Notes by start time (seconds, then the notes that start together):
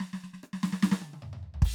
0.04 snare
0.14 snare
0.24 snare
0.34 snare
0.44 cross-stick
0.54 snare
0.64 snare
0.73 snare, hi-hat pedal
0.83 snare
0.92 snare
1.02 high tom
1.14 high tom
1.23 mid tom
1.33 mid tom
1.43 floor tom
1.54 floor tom
1.62 kick, crash